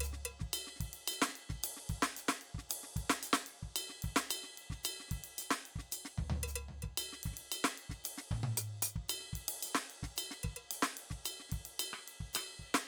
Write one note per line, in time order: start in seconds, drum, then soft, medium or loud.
0.01 hi-hat pedal medium
0.01 percussion loud
0.13 snare soft
0.26 percussion loud
0.40 kick soft
0.40 snare soft
0.54 hi-hat pedal medium
0.54 ride bell loud
0.67 snare soft
0.76 snare soft
0.81 kick soft
0.81 ride medium
0.86 kick soft
0.94 ride medium
1.08 hi-hat pedal medium
1.08 ride bell loud
1.22 snare loud
1.29 snare soft
1.36 ride soft
1.50 kick soft
1.50 snare soft
1.56 kick soft
1.64 hi-hat pedal medium
1.64 ride loud
1.77 snare soft
1.90 kick soft
1.90 ride soft
1.97 kick soft
2.03 snare loud
2.17 hi-hat pedal medium
2.17 ride medium
2.29 snare loud
2.42 ride soft
2.55 kick soft
2.55 snare soft
2.70 hi-hat pedal medium
2.70 ride loud
2.84 snare soft
2.97 kick soft
2.97 ride medium
3.03 kick soft
3.10 snare loud
3.23 hi-hat pedal medium
3.23 ride bell medium
3.34 snare loud
3.47 ride medium
3.63 kick soft
3.76 hi-hat pedal medium
3.76 ride bell loud
3.90 snare soft
4.03 kick soft
4.03 ride medium
4.10 kick soft
4.17 snare loud
4.30 hi-hat pedal medium
4.30 ride bell loud
4.44 snare soft
4.58 ride soft
4.71 kick soft
4.71 snare soft
4.84 hi-hat pedal medium
4.84 ride bell loud
5.00 snare soft
5.09 kick soft
5.09 snare soft
5.09 ride medium
5.18 kick soft
5.24 ride medium
5.39 hi-hat pedal medium
5.39 ride bell medium
5.51 snare loud
5.66 ride soft
5.76 kick soft
5.76 snare soft
5.92 hi-hat pedal medium
5.92 ride bell medium
6.05 snare medium
6.18 kick soft
6.18 floor tom medium
6.30 floor tom medium
6.44 percussion loud
6.48 hi-hat pedal medium
6.56 percussion loud
6.69 floor tom soft
6.83 kick soft
6.83 percussion medium
6.98 hi-hat pedal medium
6.98 ride bell loud
7.13 snare soft
7.24 kick soft
7.24 snare soft
7.24 ride medium
7.32 kick soft
7.32 snare soft
7.37 snare soft
7.37 ride medium
7.52 hi-hat pedal medium
7.52 ride bell loud
7.65 snare loud
7.78 ride soft
7.90 kick soft
7.90 snare soft
8.05 hi-hat pedal medium
8.05 ride loud
8.18 snare medium
8.31 kick soft
8.31 mid tom medium
8.44 mid tom medium
8.58 closed hi-hat loud
8.58 hi-hat pedal medium
8.83 closed hi-hat loud
8.96 kick soft
9.09 hi-hat pedal medium
9.09 ride bell loud
9.20 snare soft
9.26 snare soft
9.33 kick soft
9.33 ride medium
9.49 ride loud
9.63 hi-hat pedal medium
9.63 ride bell medium
9.75 snare loud
9.90 ride soft
10.03 kick soft
10.03 snare soft
10.17 hi-hat pedal medium
10.17 ride bell loud
10.31 snare medium
10.44 kick soft
10.44 percussion medium
10.51 kick soft
10.57 percussion medium
10.71 hi-hat pedal medium
10.71 ride loud
10.83 snare loud
10.97 ride medium
11.11 kick soft
11.11 snare soft
11.25 hi-hat pedal medium
11.25 ride bell loud
11.40 snare soft
11.50 kick soft
11.50 snare soft
11.50 ride medium
11.55 kick soft
11.55 snare soft
11.61 snare soft
11.65 snare soft
11.65 ride medium
11.69 snare soft
11.80 hi-hat pedal medium
11.80 ride bell loud
11.94 cross-stick medium
11.99 cross-stick soft
12.08 ride medium
12.21 kick soft
12.34 cross-stick medium
12.34 hi-hat pedal medium
12.34 ride bell loud
12.60 kick soft
12.60 ride soft
12.75 snare loud